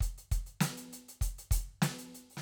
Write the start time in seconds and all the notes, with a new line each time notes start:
0.01 closed hi-hat, kick
0.18 closed hi-hat
0.32 closed hi-hat, kick
0.47 closed hi-hat
0.61 closed hi-hat, snare
0.78 open hi-hat
0.93 closed hi-hat
1.09 closed hi-hat
1.22 closed hi-hat, kick
1.39 closed hi-hat
1.51 open hi-hat, kick
1.82 open hi-hat, snare, hi-hat pedal
1.99 closed hi-hat
2.15 closed hi-hat
2.30 open hi-hat
2.37 snare